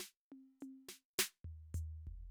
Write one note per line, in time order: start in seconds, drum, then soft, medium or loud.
0.05 snare soft
0.32 high tom soft
0.61 hi-hat pedal soft
0.61 high tom medium
0.89 snare soft
1.18 snare medium
1.18 hi-hat pedal medium
1.44 floor tom soft
1.74 floor tom medium
1.74 hi-hat pedal medium
2.07 kick soft